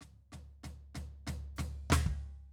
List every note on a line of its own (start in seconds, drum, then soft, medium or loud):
0.01 snare soft
0.01 floor tom soft
0.32 snare soft
0.32 floor tom soft
0.63 snare soft
0.63 floor tom soft
0.95 snare soft
0.95 floor tom medium
1.27 snare medium
1.27 floor tom medium
1.56 snare medium
1.56 floor tom medium
1.56 hi-hat pedal soft
1.90 snare loud
1.90 floor tom loud
2.06 kick medium